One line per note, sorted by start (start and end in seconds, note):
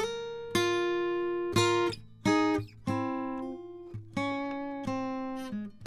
0.00 1.56 A#4
0.55 1.56 F4
1.57 1.96 F4
1.57 1.95 A#4
2.26 2.63 D#4
2.26 2.61 G#4
2.88 3.62 C4
2.88 3.43 E4
3.43 4.02 F4
4.17 4.86 C#4
4.86 5.62 C4